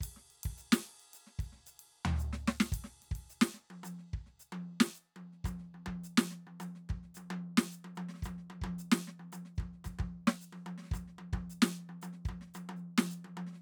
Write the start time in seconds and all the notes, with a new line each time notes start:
0.01 kick, hi-hat pedal, ride
0.16 snare
0.30 ride
0.43 kick, ride
0.58 hi-hat pedal
0.72 snare, ride
0.85 snare
1.00 ride
1.14 hi-hat pedal, ride
1.27 snare
1.39 kick, ride
1.52 snare
1.56 snare
1.66 hi-hat pedal, ride
1.79 ride
2.05 floor tom
2.16 snare, hi-hat pedal
2.33 snare
2.48 snare
2.60 snare
2.72 kick, hi-hat pedal, ride
2.84 snare
3.02 snare, ride
3.11 kick
3.15 ride
3.30 hi-hat pedal
3.41 snare
3.54 snare
3.56 snare
3.70 high tom
3.83 hi-hat pedal, high tom
3.99 snare
4.13 kick
4.26 snare
4.40 hi-hat pedal
4.52 high tom
4.80 snare
4.94 hi-hat pedal
5.16 high tom
5.33 snare
5.44 kick, hi-hat pedal, high tom
5.59 snare
5.62 snare
5.74 high tom
5.86 kick, high tom
6.04 hi-hat pedal
6.17 snare, high tom
6.31 snare
6.47 high tom
6.60 hi-hat pedal, high tom
6.75 snare
6.89 kick, high tom
7.03 snare
7.15 hi-hat pedal, high tom
7.30 high tom
7.57 snare, high tom
7.72 hi-hat pedal
7.84 high tom
7.95 hi-hat pedal, high tom
8.09 snare
8.14 snare
8.18 snare
8.21 kick, snare, hi-hat pedal
8.26 high tom
8.38 snare
8.50 high tom
8.62 kick, high tom
8.78 hi-hat pedal
8.92 snare, high tom
9.07 snare
9.20 high tom
9.32 hi-hat pedal, high tom
9.45 snare
9.56 kick, hi-hat pedal
9.60 high tom
9.73 snare
9.84 kick, hi-hat pedal, high tom
9.99 kick, high tom
10.27 snare, high tom
10.41 hi-hat pedal
10.53 high tom
10.66 hi-hat pedal, high tom
10.78 snare
10.82 snare
10.85 snare
10.87 snare
10.91 kick, hi-hat pedal, high tom
11.08 snare
11.18 high tom
11.33 kick, high tom
11.50 hi-hat pedal
11.62 snare, high tom
11.79 snare
11.89 high tom
12.02 hi-hat pedal, high tom
12.13 snare
12.25 kick, hi-hat pedal, high tom
12.41 snare
12.46 snare
12.54 hi-hat pedal, high tom
12.69 high tom
12.76 hi-hat pedal
12.98 snare, high tom
13.10 hi-hat pedal
13.25 high tom
13.37 high tom
13.47 snare
13.51 snare
13.54 snare